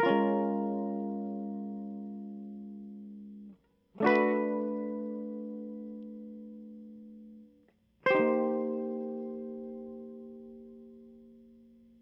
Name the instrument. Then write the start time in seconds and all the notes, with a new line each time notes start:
electric guitar
0.00 F4 A#4
0.06 C#4
0.11 G#3
4.01 A3 D4 F#4
4.07 B4
8.07 C5
8.11 G4
8.15 D#4
8.20 A#3